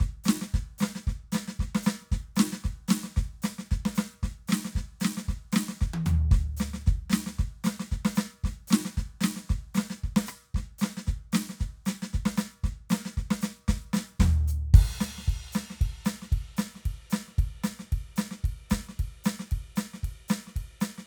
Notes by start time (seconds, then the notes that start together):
0.01 kick, snare
0.25 snare, hi-hat pedal
0.29 snare
0.42 snare
0.55 kick, snare
0.79 snare, hi-hat pedal
0.83 snare
0.96 snare
1.08 kick, snare
1.33 snare, hi-hat pedal
1.36 snare
1.49 snare
1.60 kick, snare
1.76 snare
1.84 snare, hi-hat pedal
2.03 snare
2.12 kick, snare
2.37 snare, hi-hat pedal
2.40 snare
2.53 snare
2.65 kick, snare
2.89 snare, hi-hat pedal
2.91 snare
3.04 snare
3.17 kick, snare
3.43 cross-stick, snare, hi-hat pedal
3.59 snare
3.72 kick, snare
3.86 snare
3.96 snare, hi-hat pedal
4.24 kick, snare
4.48 snare, hi-hat pedal
4.53 snare
4.65 snare
4.76 kick, snare
5.01 snare, hi-hat pedal
5.05 snare
5.18 snare
5.29 kick, snare
5.53 snare, hi-hat pedal
5.57 snare
5.69 snare
5.82 kick, snare
5.94 high tom
6.06 floor tom, hi-hat pedal
6.32 kick, snare
6.58 snare, hi-hat pedal
6.74 snare
6.87 kick, snare
7.11 snare, hi-hat pedal
7.14 snare
7.27 snare
7.39 kick, snare
7.65 snare, hi-hat pedal
7.67 snare
7.80 snare
7.92 kick, snare
8.06 snare
8.16 snare, hi-hat pedal
8.45 kick, snare
8.68 snare, hi-hat pedal
8.73 snare
8.86 snare
8.98 kick, snare
9.22 snare, hi-hat pedal
9.25 snare
9.37 snare
9.50 kick, snare
9.75 snare, hi-hat pedal
9.78 snare
9.91 snare
10.04 kick, snare
10.17 snare
10.27 cross-stick, hi-hat pedal
10.55 kick, snare
10.79 snare, hi-hat pedal
10.84 snare
10.98 snare
11.08 kick, snare
11.33 snare, hi-hat pedal
11.36 snare
11.50 snare
11.61 kick, snare
11.86 snare, hi-hat pedal
11.89 snare
12.03 snare
12.14 kick, snare
12.26 snare
12.38 snare, hi-hat pedal
12.64 kick, snare
12.90 snare, hi-hat pedal
12.93 snare
13.06 snare
13.18 kick, snare
13.31 snare
13.42 snare, hi-hat pedal
13.69 kick, snare
13.94 snare, hi-hat pedal
13.97 snare
14.20 kick, snare, floor tom
14.48 hi-hat pedal
14.75 kick, crash
15.01 snare, hi-hat pedal, ride
15.19 snare
15.29 kick, ride
15.53 snare, hi-hat pedal, ride
15.71 snare
15.82 kick, ride
16.06 snare, hi-hat pedal, ride
16.23 snare
16.33 kick, ride
16.58 snare, hi-hat pedal, ride
16.76 snare
16.86 kick, ride
17.11 snare, hi-hat pedal, ride
17.29 snare
17.39 kick, ride
17.64 snare, hi-hat pedal, ride
17.80 snare
17.93 kick, ride
18.17 snare, hi-hat pedal, ride
18.32 snare
18.45 kick, ride
18.71 kick, snare, hi-hat pedal, ride
18.89 snare
19.00 kick, ride
19.25 snare, hi-hat pedal, ride
19.40 snare
19.52 kick, ride
19.77 snare, hi-hat pedal, ride
19.94 snare
20.04 kick, ride
20.29 snare, hi-hat pedal, ride
20.48 snare
20.57 kick, ride
20.81 snare, hi-hat pedal, ride
20.99 snare